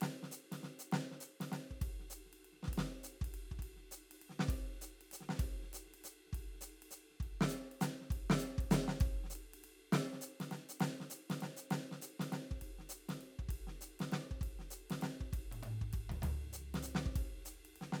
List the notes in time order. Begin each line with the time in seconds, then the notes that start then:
0.01 snare, ride
0.23 snare
0.31 hi-hat pedal, ride
0.52 snare, hi-hat pedal, ride
0.63 snare, ride
0.79 hi-hat pedal
0.92 snare, ride
1.11 snare
1.20 hi-hat pedal, ride
1.40 snare, ride
1.52 snare, ride
1.71 kick
1.81 kick, ride
2.00 snare
2.10 hi-hat pedal, ride
2.25 snare
2.33 ride
2.45 ride
2.52 snare
2.63 snare
2.68 kick
2.73 ride
2.78 snare
3.03 hi-hat pedal, ride
3.21 kick, ride
3.34 ride
3.43 snare
3.51 kick
3.59 kick, ride
3.76 snare
3.91 hi-hat pedal, ride
4.11 hi-hat pedal, ride
4.22 ride
4.29 snare
4.39 snare
4.48 kick, ride
4.81 hi-hat pedal, ride
5.01 ride
5.11 hi-hat pedal, ride
5.21 snare
5.29 snare
5.34 snare
5.39 kick, ride
5.63 snare
5.73 hi-hat pedal, ride
5.86 snare
5.94 ride
6.04 hi-hat pedal, ride
6.26 snare
6.33 kick, ride
6.54 snare
6.61 hi-hat pedal, ride
6.82 ride
6.91 hi-hat pedal, ride
7.10 snare
7.20 kick, ride
7.41 snare
7.49 hi-hat pedal, ride
7.71 ride
7.81 snare, hi-hat pedal, ride
8.01 snare
8.10 kick, ride
8.30 snare
8.39 hi-hat pedal
8.43 ride
8.58 kick, ride
8.71 snare, hi-hat pedal
8.88 snare
9.00 kick, ride
9.24 snare
9.30 hi-hat pedal
9.35 ride
9.54 ride
9.64 ride
9.92 snare, ride
10.13 snare
10.21 hi-hat pedal, ride
10.40 snare, hi-hat pedal, ride
10.51 snare, ride
10.69 hi-hat pedal
10.80 snare, ride
11.00 snare
11.10 hi-hat pedal, ride
11.30 snare, ride
11.41 snare, ride
11.57 hi-hat pedal
11.71 snare, ride
11.91 snare
12.02 hi-hat pedal, ride
12.20 snare, ride
12.32 snare, ride
12.51 kick
12.61 kick, ride
12.79 snare
12.89 hi-hat pedal, ride
13.09 snare, ride
13.21 ride
13.39 kick
13.49 kick, ride
13.67 snare
13.81 hi-hat pedal, ride
13.99 snare, ride
14.12 snare, ride
14.31 kick
14.41 kick, ride
14.59 snare
14.71 hi-hat pedal, ride
14.90 snare, ride
15.01 snare, ride
15.21 kick
15.33 kick, ride
15.52 high tom, ride
15.63 high tom, ride
15.81 kick
15.93 kick, ride
16.09 floor tom, ride
16.22 floor tom, ride
16.53 hi-hat pedal, ride
16.74 snare, ride
16.83 hi-hat pedal, ride
16.95 snare
17.06 kick
17.16 kick, ride
17.45 hi-hat pedal, ride
17.65 ride
17.76 ride
17.81 snare
17.92 snare